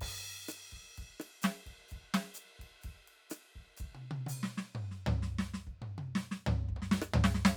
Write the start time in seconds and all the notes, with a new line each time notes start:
0.01 kick, crash
0.07 kick
0.48 cross-stick, hi-hat pedal, ride
0.72 kick, ride
0.77 kick
0.82 snare
0.95 kick, hi-hat pedal, ride
1.03 kick
1.20 cross-stick, ride
1.42 snare, hi-hat pedal, ride
1.51 snare
1.66 kick, ride
1.71 kick
1.80 snare
1.88 kick, hi-hat pedal, ride
1.97 kick
2.14 snare, ride
2.24 snare
2.34 hi-hat pedal, ride
2.45 snare
2.59 kick, ride
2.64 kick
2.81 kick, hi-hat pedal, ride
2.90 kick
3.08 ride
3.30 cross-stick, hi-hat pedal, ride
3.56 kick
3.61 kick, snare
3.77 kick, hi-hat pedal, ride bell
3.86 kick
3.95 high tom
4.11 high tom
4.27 hi-hat pedal, high tom
4.43 snare
4.58 snare
4.75 mid tom
4.91 snare
5.07 floor tom
5.23 snare
5.39 snare
5.54 snare
5.67 kick
5.72 kick
5.82 mid tom
5.98 high tom
6.15 snare
6.31 snare
6.47 floor tom
6.69 kick
6.75 kick, mid tom
6.82 snare
6.92 snare
7.02 cross-stick
7.14 floor tom
7.24 snare
7.35 snare
7.45 snare